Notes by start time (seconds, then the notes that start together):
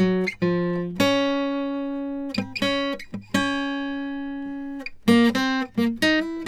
0.00 F#3
0.43 F3
1.01 C#4
2.39 C4
2.63 C#4
3.35 C#4
5.09 A#3
5.36 C4
5.79 A#3
6.03 D#4
6.21 E4